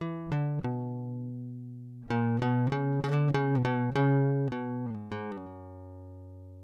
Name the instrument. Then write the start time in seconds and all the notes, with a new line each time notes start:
acoustic guitar
0.02 E3
0.12 E3
0.33 D3
0.66 B2
2.12 A#2
2.44 B2
2.74 C#3 B3
3.06 C#3
3.15 D3
3.36 C#3
3.57 B2
3.97 C#3
4.49 B2
5.13 G#2
5.33 F#2